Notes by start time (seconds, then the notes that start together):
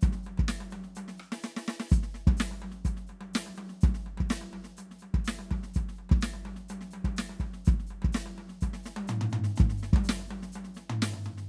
0.01 kick, hi-hat pedal, high tom
0.12 snare
0.23 hi-hat pedal, high tom
0.38 kick, high tom
0.48 snare, hi-hat pedal
0.60 high tom
0.70 hi-hat pedal, high tom
0.83 snare
0.95 hi-hat pedal, high tom
1.08 snare
1.17 cross-stick, hi-hat pedal
1.32 snare
1.43 snare, hi-hat pedal
1.57 snare
1.65 snare, hi-hat pedal
1.80 snare
1.89 closed hi-hat, kick, hi-hat pedal
2.03 snare
2.10 hi-hat pedal
2.14 snare
2.27 kick, high tom
2.37 snare, hi-hat pedal
2.51 high tom
2.59 hi-hat pedal, high tom
2.71 snare
2.85 kick, hi-hat pedal, high tom
2.97 snare
3.07 hi-hat pedal, high tom
3.21 high tom
3.34 snare, hi-hat pedal
3.46 kick, high tom
3.55 hi-hat pedal, high tom
3.69 snare
3.81 kick, hi-hat pedal, high tom
3.94 snare
4.03 hi-hat pedal, high tom
4.17 kick, high tom
4.29 snare, hi-hat pedal
4.41 high tom
4.53 high tom
4.64 snare
4.77 hi-hat pedal, high tom
4.91 snare
4.99 hi-hat pedal, high tom
5.14 kick, high tom
5.24 snare, hi-hat pedal
5.39 high tom
5.51 kick, high tom
5.63 snare
5.74 kick, hi-hat pedal, high tom
5.89 snare
5.95 hi-hat pedal, high tom
6.09 kick, high tom
6.21 snare, hi-hat pedal
6.34 high tom
6.43 hi-hat pedal, high tom
6.56 snare
6.69 hi-hat pedal, high tom
6.81 snare
6.91 hi-hat pedal, high tom
7.04 kick, high tom
7.17 snare, hi-hat pedal
7.29 high tom
7.38 kick, hi-hat pedal, high tom
7.53 snare
7.65 kick, hi-hat pedal, high tom
7.79 snare
7.87 hi-hat pedal
7.91 high tom
8.02 kick, high tom
8.12 snare, hi-hat pedal
8.26 high tom
8.36 hi-hat pedal, high tom
8.49 snare
8.61 kick, hi-hat pedal, high tom
8.73 snare
8.83 snare, hi-hat pedal
8.96 high tom
9.07 floor tom, hi-hat pedal
9.21 floor tom
9.29 floor tom, hi-hat pedal
9.44 snare
9.56 floor tom, hi-hat pedal
9.60 kick
9.70 snare
9.78 hi-hat pedal
9.83 snare
9.93 kick, high tom
10.04 hi-hat pedal
10.09 snare
10.20 high tom
10.27 hi-hat pedal, high tom
10.43 snare
10.52 hi-hat pedal, high tom
10.64 snare
10.74 snare, hi-hat pedal
10.90 floor tom
11.02 snare, hi-hat pedal
11.14 floor tom
11.24 floor tom, hi-hat pedal
11.38 snare